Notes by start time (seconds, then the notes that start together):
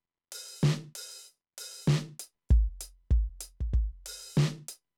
0.33 open hi-hat
0.63 snare, hi-hat pedal
0.96 open hi-hat
1.27 hi-hat pedal
1.58 open hi-hat
1.87 snare, hi-hat pedal
2.20 open hi-hat
2.50 kick, hi-hat pedal
2.81 closed hi-hat
3.11 kick
3.41 closed hi-hat
3.61 kick
3.74 kick
4.07 open hi-hat
4.37 snare, hi-hat pedal
4.69 closed hi-hat